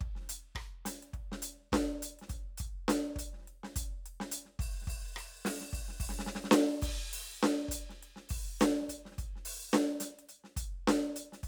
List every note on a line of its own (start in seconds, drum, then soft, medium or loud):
0.01 kick soft
0.01 closed hi-hat soft
0.16 snare soft
0.21 snare soft
0.29 closed hi-hat loud
0.29 snare soft
0.55 kick soft
0.55 cross-stick medium
0.86 open hi-hat loud
0.86 snare medium
1.03 closed hi-hat soft
1.14 kick soft
1.14 closed hi-hat soft
1.32 snare medium
1.42 closed hi-hat loud
1.73 kick soft
1.73 snare medium
1.73 closed hi-hat soft
2.03 closed hi-hat medium
2.19 snare soft
2.19 closed hi-hat soft
2.28 open hi-hat medium
2.28 kick soft
2.28 snare soft
2.58 closed hi-hat medium
2.58 kick soft
2.88 closed hi-hat medium
2.88 snare medium
3.16 closed hi-hat medium
3.16 kick soft
3.33 snare soft
3.38 snare soft
3.41 snare soft
3.45 snare soft
3.45 closed hi-hat soft
3.64 snare soft
3.76 closed hi-hat loud
3.76 kick soft
4.06 closed hi-hat medium
4.20 snare medium
4.32 closed hi-hat loud
4.46 snare soft
4.59 open hi-hat medium
4.59 kick medium
4.82 snare soft
4.86 open hi-hat medium
4.86 kick soft
4.86 snare soft
5.16 open hi-hat medium
5.16 cross-stick medium
5.45 open hi-hat loud
5.45 snare medium
5.61 snare soft
5.73 open hi-hat medium
5.73 kick soft
5.89 snare soft
6.00 open hi-hat loud
6.00 kick soft
6.09 snare soft
6.19 snare medium
6.27 snare medium
6.35 snare medium
6.44 snare medium
6.51 snare loud
6.82 kick medium
6.82 hi-hat pedal medium
6.82 crash medium
7.13 open hi-hat loud
7.40 snare loud
7.40 hi-hat pedal soft
7.69 closed hi-hat loud
7.69 kick soft
7.90 snare soft
7.90 closed hi-hat soft
8.03 closed hi-hat soft
8.16 snare soft
8.29 open hi-hat medium
8.29 kick medium
8.60 snare loud
8.60 closed hi-hat medium
8.60 hi-hat pedal medium
8.81 snare soft
8.89 closed hi-hat medium
8.89 kick soft
9.06 snare soft
9.12 snare soft
9.16 closed hi-hat soft
9.16 kick soft
9.16 snare soft
9.36 snare soft
9.45 open hi-hat medium
9.71 snare loud
9.71 hi-hat pedal soft
10.00 closed hi-hat loud
10.00 snare soft
10.19 closed hi-hat soft
10.29 closed hi-hat medium
10.44 snare soft
10.57 closed hi-hat medium
10.57 kick soft
10.88 snare loud
10.88 closed hi-hat soft
11.16 closed hi-hat medium
11.33 closed hi-hat soft
11.33 snare soft
11.43 closed hi-hat soft
11.43 kick soft